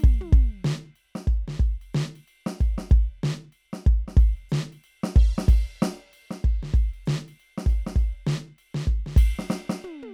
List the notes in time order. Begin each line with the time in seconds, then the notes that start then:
0.01 kick, ride
0.21 floor tom
0.33 kick, ride bell
0.65 snare, hi-hat pedal
0.96 ride
1.16 snare
1.28 kick
1.48 snare
1.60 kick, ride bell
1.82 ride bell
1.94 snare, hi-hat pedal
2.16 ride bell
2.28 ride
2.47 snare
2.61 kick, ride
2.78 snare
2.90 kick, ride bell
3.24 snare, hi-hat pedal
3.53 ride bell
3.73 snare
3.87 kick
4.08 snare
4.17 kick, ride
4.37 kick, ride
4.49 snare, hi-hat pedal
4.73 ride
4.84 ride bell
5.04 snare
5.16 kick, crash
5.38 snare
5.48 kick, ride bell
5.83 snare, hi-hat pedal
6.13 ride bell
6.31 snare
6.44 kick
6.63 snare
6.74 kick, ride bell
6.94 ride bell
7.06 snare, hi-hat pedal
7.28 ride bell
7.40 ride bell
7.58 snare
7.66 kick, ride
7.87 snare
7.96 kick, ride bell
8.27 snare, hi-hat pedal
8.59 ride bell
8.75 snare
8.87 kick
9.07 snare
9.17 kick, ride
9.39 snare
9.49 snare, hi-hat pedal
9.70 snare
9.76 hi-hat pedal
9.84 floor tom
10.03 mid tom